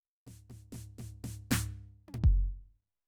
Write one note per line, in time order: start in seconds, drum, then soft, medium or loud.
0.27 snare soft
0.27 floor tom soft
0.50 snare soft
0.50 floor tom soft
0.72 snare soft
0.72 floor tom soft
0.98 snare soft
0.98 floor tom soft
1.24 snare soft
1.24 floor tom medium
1.51 snare loud
1.51 floor tom loud
2.08 high tom soft
2.14 floor tom medium
2.24 kick medium